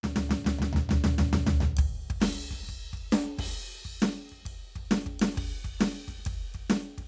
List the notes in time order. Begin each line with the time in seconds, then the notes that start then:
0.01 snare, floor tom
0.16 snare, floor tom
0.29 snare, floor tom
0.44 snare, floor tom
0.58 snare, floor tom
0.73 snare, floor tom
0.89 snare, floor tom
1.04 snare, floor tom
1.18 snare, floor tom
1.33 snare, floor tom
1.46 snare, floor tom
1.60 snare, floor tom
1.74 kick, ride
1.78 kick
2.10 kick
2.20 snare, crash
2.51 kick, snare
2.62 snare
2.67 kick, snare, ride bell
2.93 kick
2.97 ride
3.12 snare, ride
3.37 kick, snare, crash
3.47 snare
3.51 snare
3.55 snare
3.85 kick
4.00 snare, ride bell
4.29 kick, ride
4.42 kick, snare
4.46 ride
4.75 kick, ride, floor tom
4.91 snare, ride
5.06 kick
5.19 snare, ride
5.34 kick, crash
5.64 kick
5.79 snare, crash
6.08 kick, snare, ride bell
6.18 snare
6.24 kick, snare, ride
6.27 snare
6.30 snare
6.54 kick, ride
6.70 snare, ride
6.98 kick, snare, ride